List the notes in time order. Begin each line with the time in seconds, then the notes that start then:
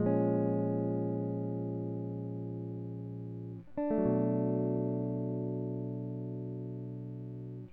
0.00 A#2 F3 G#3
0.07 C#4
3.79 D4
3.92 A3
3.99 F#3
4.08 B2